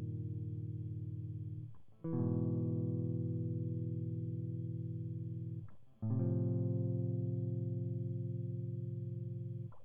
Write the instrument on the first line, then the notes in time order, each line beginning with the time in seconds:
electric guitar
2.05 E3
2.14 B2
2.20 G#2
6.04 A2
6.11 C3
6.20 F3